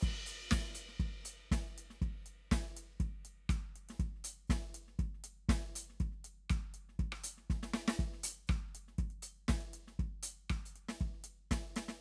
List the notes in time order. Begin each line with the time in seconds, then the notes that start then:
0.01 kick, hi-hat pedal, crash
0.26 open hi-hat, kick
0.48 kick, snare, closed hi-hat, hi-hat pedal
0.64 snare
0.75 closed hi-hat
0.88 snare
1.00 kick, closed hi-hat
1.23 closed hi-hat, snare
1.51 kick, snare, closed hi-hat
1.78 closed hi-hat
1.90 snare
2.02 kick, closed hi-hat
2.26 closed hi-hat
2.51 kick, snare, closed hi-hat
2.77 closed hi-hat
3.00 kick, closed hi-hat
3.25 closed hi-hat
3.49 kick, cross-stick, closed hi-hat
3.76 closed hi-hat
3.89 snare, closed hi-hat
3.99 kick, closed hi-hat
4.16 snare
4.24 open hi-hat
4.47 kick, snare, closed hi-hat, hi-hat pedal
4.74 closed hi-hat
4.88 snare
4.99 kick, closed hi-hat
5.14 snare
5.24 closed hi-hat
5.49 kick, snare, closed hi-hat
5.75 closed hi-hat
5.89 snare
5.93 snare
6.00 kick, closed hi-hat
6.12 snare
6.24 closed hi-hat
6.50 kick, cross-stick, closed hi-hat
6.74 closed hi-hat
6.89 snare
6.99 kick, closed hi-hat
7.12 cross-stick
7.17 cross-stick
7.24 closed hi-hat
7.37 snare
7.50 kick, snare
7.63 snare
7.73 snare
7.88 snare
7.99 kick, closed hi-hat
8.13 snare
8.23 open hi-hat
8.47 kick, cross-stick, closed hi-hat, hi-hat pedal
8.67 snare
8.75 closed hi-hat
8.88 snare
8.98 kick, closed hi-hat
9.10 closed hi-hat
9.22 open hi-hat
9.48 kick, snare, closed hi-hat
9.60 closed hi-hat
9.73 closed hi-hat
9.87 snare
9.99 kick, closed hi-hat
10.23 closed hi-hat
10.49 kick, cross-stick, closed hi-hat
10.65 closed hi-hat
10.76 closed hi-hat
10.88 snare
11.00 kick, closed hi-hat
11.14 snare
11.24 closed hi-hat
11.51 kick, snare, closed hi-hat
11.76 snare, closed hi-hat
11.88 snare